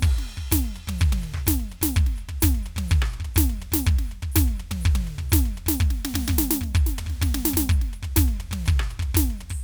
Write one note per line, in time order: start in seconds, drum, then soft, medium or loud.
0.01 kick loud
0.01 hi-hat pedal medium
0.01 crash medium
0.18 snare soft
0.24 hi-hat pedal soft
0.29 floor tom soft
0.37 kick medium
0.51 kick loud
0.51 snare loud
0.51 hi-hat pedal medium
0.64 floor tom soft
0.74 floor tom medium
0.74 hi-hat pedal soft
0.88 kick medium
0.88 high tom loud
0.99 kick loud
0.99 floor tom medium
0.99 hi-hat pedal medium
1.12 high tom loud
1.21 floor tom medium
1.21 hi-hat pedal medium
1.34 kick medium
1.34 percussion medium
1.46 kick loud
1.46 snare loud
1.46 hi-hat pedal medium
1.60 floor tom soft
1.69 floor tom medium
1.69 hi-hat pedal soft
1.82 kick medium
1.82 snare loud
1.93 kick loud
1.93 floor tom medium
1.93 hi-hat pedal medium
2.06 snare soft
2.16 floor tom soft
2.16 hi-hat pedal medium
2.29 kick medium
2.29 floor tom medium
2.40 kick loud
2.40 snare loud
2.40 hi-hat pedal medium
2.54 floor tom soft
2.63 floor tom medium
2.63 hi-hat pedal medium
2.76 kick medium
2.76 high tom loud
2.88 kick loud
2.88 hi-hat pedal medium
2.92 floor tom medium
3.02 cross-stick loud
3.08 hi-hat pedal soft
3.14 floor tom medium
3.20 kick medium
3.25 floor tom medium
3.35 kick loud
3.35 snare loud
3.35 hi-hat pedal medium
3.50 floor tom medium
3.57 hi-hat pedal soft
3.62 floor tom medium
3.72 kick medium
3.72 snare loud
3.83 kick loud
3.83 hi-hat pedal medium
3.88 floor tom medium
3.99 snare medium
4.06 hi-hat pedal soft
4.11 floor tom medium
4.22 kick medium
4.22 floor tom medium
4.32 snare loud
4.32 hi-hat pedal medium
4.36 kick loud
4.48 floor tom soft
4.55 hi-hat pedal soft
4.60 floor tom medium
4.71 kick medium
4.71 high tom loud
4.81 hi-hat pedal medium
4.85 kick loud
4.95 high tom loud
5.04 floor tom medium
5.04 hi-hat pedal soft
5.18 kick medium
5.18 floor tom medium
5.29 kick loud
5.29 snare loud
5.29 hi-hat pedal medium
5.46 floor tom medium
5.53 hi-hat pedal soft
5.57 floor tom medium
5.66 kick medium
5.66 snare loud
5.77 kick loud
5.77 hi-hat pedal medium
5.81 floor tom medium
5.91 snare medium
5.98 hi-hat pedal soft
6.05 snare loud
6.14 kick medium
6.14 snare loud
6.24 snare loud
6.24 hi-hat pedal medium
6.29 kick loud
6.38 snare loud
6.48 snare loud
6.48 hi-hat pedal soft
6.61 kick medium
6.61 snare soft
6.74 kick loud
6.74 floor tom medium
6.74 hi-hat pedal medium
6.87 snare medium
6.96 floor tom loud
6.96 hi-hat pedal soft
7.06 kick medium
7.06 snare soft
7.22 kick loud
7.22 snare medium
7.22 hi-hat pedal medium
7.34 snare loud
7.45 snare loud
7.45 hi-hat pedal soft
7.54 kick medium
7.54 snare loud
7.69 kick loud
7.69 floor tom soft
7.69 hi-hat pedal medium
7.82 snare soft
7.93 floor tom medium
7.93 hi-hat pedal soft
8.03 kick medium
8.03 floor tom medium
8.16 kick loud
8.16 snare loud
8.16 hi-hat pedal medium
8.28 floor tom medium
8.40 floor tom medium
8.40 hi-hat pedal soft
8.51 kick medium
8.51 high tom loud
8.66 kick loud
8.66 floor tom medium
8.66 hi-hat pedal medium
8.79 cross-stick loud
8.89 floor tom medium
8.89 hi-hat pedal soft
8.99 kick medium
8.99 floor tom medium
9.14 kick loud
9.14 snare loud
9.14 hi-hat pedal medium
9.30 floor tom soft
9.37 floor tom medium
9.37 hi-hat pedal soft
9.50 open hi-hat medium
9.50 kick medium